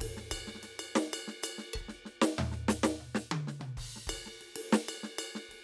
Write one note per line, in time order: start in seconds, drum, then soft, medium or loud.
0.01 kick soft
0.01 hi-hat pedal soft
0.01 ride loud
0.09 kick soft
0.12 kick soft
0.17 snare soft
0.22 snare soft
0.32 kick soft
0.32 ride bell loud
0.48 snare soft
0.55 snare soft
0.64 snare soft
0.64 ride bell medium
0.80 ride bell loud
0.96 snare loud
1.14 ride bell loud
1.28 snare soft
1.43 hi-hat pedal loud
1.43 ride bell loud
1.59 snare soft
1.74 kick soft
1.74 hi-hat pedal soft
1.74 percussion medium
1.85 kick soft
1.87 kick soft
1.87 snare soft
2.06 snare soft
2.22 snare loud
2.39 floor tom loud
2.52 snare soft
2.69 kick soft
2.69 snare loud
2.69 hi-hat pedal loud
2.84 snare loud
3.01 mid tom soft
3.15 snare medium
3.32 high tom loud
3.48 snare soft
3.60 snare soft
3.60 mid tom medium
3.78 kick soft
3.78 hi-hat pedal soft
3.78 crash medium
3.85 kick soft
3.96 snare soft
4.07 kick soft
4.07 ride bell loud
4.26 snare soft
4.35 cross-stick soft
4.42 ride medium
4.56 ride loud
4.73 snare loud
4.89 ride bell loud
5.04 snare medium
5.19 hi-hat pedal medium
5.19 ride bell loud
5.36 snare medium
5.49 kick soft
5.49 ride medium
5.53 snare soft